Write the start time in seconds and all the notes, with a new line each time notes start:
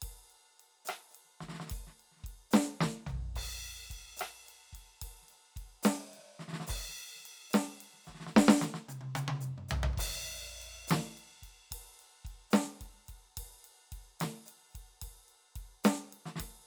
0.01 kick, hi-hat pedal, ride
0.30 ride
0.60 ride
0.85 cross-stick, hi-hat pedal, ride
1.11 hi-hat pedal
1.15 ride
1.25 snare
1.41 kick, snare
1.49 snare
1.53 snare
1.60 snare
1.66 snare, ride
1.71 kick, hi-hat pedal
1.78 kick
1.87 snare
2.00 ride
2.12 snare
2.17 snare
2.20 snare
2.24 kick, ride
2.51 snare, hi-hat pedal, ride
2.81 kick, snare
3.07 kick, floor tom, hi-hat pedal
3.36 kick, crash
3.90 kick, ride
4.17 hi-hat pedal, ride
4.21 cross-stick
4.46 hi-hat pedal, ride
4.73 kick, snare, ride
5.02 kick, ride
5.22 snare
5.28 snare, hi-hat pedal, ride
5.32 snare
5.56 kick, ride
5.83 snare, hi-hat pedal, ride
6.10 snare, ride
6.18 snare
6.40 snare
6.48 snare
6.53 snare
6.60 snare
6.67 kick, snare, hi-hat pedal, crash
6.76 kick
6.81 kick
6.89 snare
6.99 ride
7.16 snare
7.19 snare
7.26 ride
7.50 snare, hi-hat pedal, ride
7.81 ride
7.94 snare
8.05 snare, hi-hat pedal
8.09 kick
8.15 snare
8.20 snare
8.27 snare
8.32 kick, hi-hat pedal
8.37 snare
8.48 snare
8.61 snare, hi-hat pedal
8.74 snare
8.89 hi-hat pedal, high tom
9.01 high tom
9.15 hi-hat pedal, high tom
9.28 high tom
9.41 hi-hat pedal
9.45 mid tom
9.58 mid tom
9.69 hi-hat pedal, floor tom
9.84 floor tom
9.94 floor tom
9.98 kick, hi-hat pedal, crash
10.10 kick
10.62 ride
10.88 snare, hi-hat pedal, ride
11.18 snare, ride
11.43 kick, ride
11.69 kick, hi-hat pedal, ride
11.99 hi-hat pedal, ride
12.25 kick, ride
12.51 snare, hi-hat pedal, ride
12.63 snare
12.80 kick, snare, ride
13.06 kick, hi-hat pedal, ride
13.37 kick, ride
13.43 kick
13.65 ride
13.92 kick, ride
14.20 snare, hi-hat pedal, ride
14.46 snare, hi-hat pedal, ride
14.70 hi-hat pedal
14.75 kick, ride
15.02 kick, ride
15.08 kick
15.28 ride
15.56 kick, ride
15.84 snare, hi-hat pedal, ride
16.13 ride
16.26 snare
16.36 kick, snare, ride